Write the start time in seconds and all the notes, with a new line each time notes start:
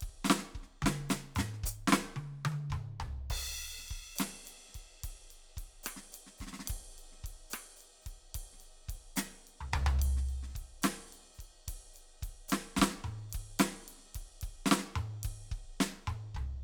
0.01 kick, ride
0.09 kick
0.25 snare, hi-hat pedal
0.30 snare
0.38 snare
0.55 kick
0.63 snare
0.82 kick, snare, high tom
0.89 kick
1.10 snare, hi-hat pedal
1.35 snare, hi-hat pedal, mid tom
1.53 snare
1.64 kick, hi-hat pedal
1.71 kick
1.88 snare
1.93 snare
2.16 high tom
2.45 high tom
2.52 high tom
2.70 kick, mid tom, high tom
3.00 kick, floor tom
3.30 kick, crash
3.41 kick
3.79 snare
3.82 snare
3.88 kick, ride
3.97 kick
4.16 hi-hat pedal, ride
4.20 snare
4.43 snare, hi-hat pedal
4.47 ride
4.68 snare
4.75 kick, ride
5.04 kick, ride
5.10 kick
5.30 hi-hat pedal, ride
5.57 kick, ride
5.84 cross-stick, hi-hat pedal, ride
5.97 snare
6.12 hi-hat pedal, ride
6.27 snare
6.38 kick, snare, hi-hat pedal
6.47 snare
6.52 snare
6.59 snare
6.65 snare, ride
6.70 kick
6.76 kick
6.98 ride
7.12 snare
7.17 snare
7.24 kick, ride
7.30 kick
7.50 cross-stick, hi-hat pedal, ride
7.76 hi-hat pedal
7.81 ride
8.02 snare, hi-hat pedal
8.06 kick, ride
8.35 kick, ride
8.41 kick
8.53 snare
8.59 snare, hi-hat pedal, ride
8.89 kick, ride
8.95 kick
9.16 snare, hi-hat pedal, ride
9.47 ride
9.61 floor tom
9.73 kick, floor tom
9.86 floor tom
9.99 kick, ride
10.05 kick
10.17 snare
10.29 ride
10.43 snare
10.48 snare
10.52 kick, snare
10.57 ride
10.62 kick
10.82 snare, hi-hat pedal, ride
11.07 hi-hat pedal
11.13 ride
11.34 hi-hat pedal
11.39 kick, ride
11.68 kick, ride
11.74 kick
11.94 hi-hat pedal, ride
12.23 kick, ride
12.29 kick
12.49 snare, hi-hat pedal, ride
12.77 kick, snare
12.82 snare
12.90 snare
13.04 mid tom
13.17 snare
13.22 snare
13.26 snare
13.28 snare, hi-hat pedal
13.33 kick, snare, ride
13.41 kick
13.59 snare, ride
13.88 ride
13.98 snare
14.05 snare
14.15 kick, ride
14.21 kick
14.41 kick, ride
14.49 kick
14.66 snare
14.71 snare
14.78 snare
14.96 mid tom
15.23 kick, ride
15.31 kick
15.46 snare
15.49 kick, snare
15.57 kick
15.62 kick
15.80 snare
16.07 kick, mid tom
16.35 kick, floor tom